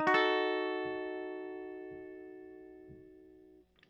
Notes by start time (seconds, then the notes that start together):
0.00 D#4
0.07 F#4
0.14 A4